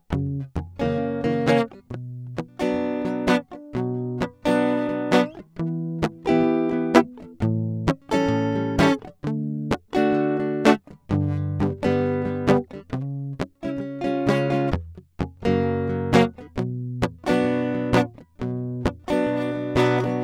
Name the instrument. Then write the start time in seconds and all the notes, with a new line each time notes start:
acoustic guitar
0.15 C#3
0.81 C#3 A#3 C#4
1.00 C#3
1.26 C#3 A#3
1.48 C#3 A#3 C#4
1.92 B2
2.61 F#3 B3 D4 F#4
3.07 F#3
3.29 F#3 B3 D4
3.54 D4
3.75 B2 F#3
4.47 F#3 B3 D4
4.91 F#3 B3
5.13 F#3 B3 D4
5.61 E3 B3
6.04 E3
6.28 B3 E4 G4
6.33 E3
6.45 E3
6.71 B3 E4
6.75 E3
6.96 B3 E4 G4
7.42 A2 E3
8.13 G3 C#4 A4
8.17 E3
8.28 A2 E3
8.58 E3 G3
8.80 D#3 G3 C#4
8.84 A4
9.26 D3 A3
9.73 A3
9.96 D3 A3 D4 F#4
10.13 D3 A3
10.39 D4
10.67 A3 D4 F#4
11.11 G2 D3
11.62 G2 D3 G3 B3
11.84 D3 G3 B3 D4
11.89 G2
12.01 G2 D3
12.27 G2 D3 G3
12.49 C#3 G3 B3
12.95 C#3
13.65 C#3 C#4 E4
13.80 C#3
14.03 C#3 C#4 F4
14.29 C#3 C#4
14.52 C#4 F4
15.47 F#2 C#3 F#3 A#3
15.64 F#2
15.90 C#3 F#3
16.14 C#3 F#3 A#3
16.59 B2 F#3
17.28 B2 B3 D4 F#4
17.32 F#3
17.45 B2 F#3
17.77 F#3
17.95 B2 F#3 B3 D4
18.42 B2 F#3
19.09 F#3 B3 D4 F#4
19.15 B2
19.31 F#3
19.53 B3
19.58 F#3
19.77 B2 F#3 B3 D4 F#4
20.00 B3 D4 F#4
20.06 B2 F#3